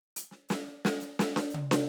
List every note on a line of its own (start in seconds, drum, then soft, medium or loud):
0.16 closed hi-hat loud
0.31 snare soft
0.49 snare loud
0.49 hi-hat pedal medium
0.67 snare soft
0.85 snare loud
1.00 snare soft
1.00 hi-hat pedal medium
1.19 snare loud
1.36 snare loud
1.50 hi-hat pedal medium
1.54 high tom loud
1.71 snare loud